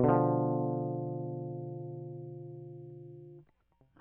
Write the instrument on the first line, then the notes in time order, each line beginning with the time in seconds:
electric guitar
0.00 B2
0.05 D3
0.09 F3